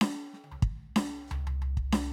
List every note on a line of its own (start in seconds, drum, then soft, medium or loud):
0.01 snare loud
0.33 snare soft
0.44 high tom soft
0.51 floor tom medium
0.62 kick loud
0.96 snare loud
1.28 floor tom loud
1.28 hi-hat pedal soft
1.47 floor tom loud
1.62 floor tom loud
1.77 kick medium
1.93 snare loud